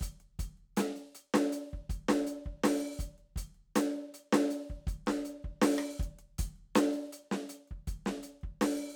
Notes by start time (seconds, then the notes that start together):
0.01 closed hi-hat, kick, hi-hat pedal
0.20 closed hi-hat
0.39 closed hi-hat, kick
0.58 closed hi-hat
0.77 closed hi-hat, snare
0.96 closed hi-hat
1.15 closed hi-hat
1.34 snare, closed hi-hat
1.53 closed hi-hat
1.71 kick, closed hi-hat
1.90 closed hi-hat, kick
2.09 closed hi-hat, snare
2.27 closed hi-hat
2.44 kick, closed hi-hat
2.64 open hi-hat, snare
2.99 closed hi-hat, kick, hi-hat pedal
3.18 closed hi-hat
3.36 closed hi-hat, kick
3.55 closed hi-hat
3.76 closed hi-hat, snare
3.95 closed hi-hat
4.14 closed hi-hat
4.33 snare, closed hi-hat
4.51 closed hi-hat
4.69 kick, closed hi-hat
4.87 closed hi-hat, kick
5.07 snare, closed hi-hat
5.25 closed hi-hat
5.43 kick, closed hi-hat
5.62 open hi-hat, snare
5.79 cross-stick
5.99 kick, hi-hat pedal
6.03 closed hi-hat
6.19 closed hi-hat
6.39 closed hi-hat, kick
6.56 closed hi-hat
6.75 closed hi-hat, snare
6.93 closed hi-hat
7.13 closed hi-hat
7.32 snare, closed hi-hat
7.50 closed hi-hat
7.68 kick, closed hi-hat
7.88 closed hi-hat, kick
8.06 snare, closed hi-hat
8.23 closed hi-hat
8.42 kick, closed hi-hat
8.61 open hi-hat, snare